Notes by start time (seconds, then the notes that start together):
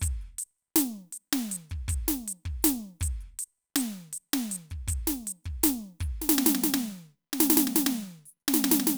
0.01 closed hi-hat, kick, hi-hat pedal
0.21 closed hi-hat
0.39 closed hi-hat
0.58 closed hi-hat
0.76 closed hi-hat, snare
1.13 closed hi-hat
1.33 snare
1.52 closed hi-hat
1.70 kick, closed hi-hat
1.88 closed hi-hat, kick
2.08 snare
2.28 closed hi-hat
2.45 kick, closed hi-hat
2.63 closed hi-hat, snare, hi-hat pedal
3.00 closed hi-hat, kick, hi-hat pedal
3.21 closed hi-hat
3.39 closed hi-hat
3.76 closed hi-hat, snare
3.94 closed hi-hat
4.13 closed hi-hat
4.33 snare
4.51 closed hi-hat
4.70 kick, closed hi-hat
4.88 closed hi-hat, kick
5.07 snare
5.27 closed hi-hat
5.45 kick, closed hi-hat
5.63 closed hi-hat, snare
6.00 kick, hi-hat pedal
6.22 snare
6.29 snare
6.38 snare, hi-hat pedal
6.46 snare
6.55 snare
6.64 snare
6.74 snare
7.33 snare
7.40 snare
7.50 snare, hi-hat pedal
7.57 snare
7.67 snare
7.76 snare
7.86 snare
8.26 hi-hat pedal
8.40 closed hi-hat
8.48 snare
8.54 snare
8.64 snare
8.72 snare
8.80 snare
8.87 snare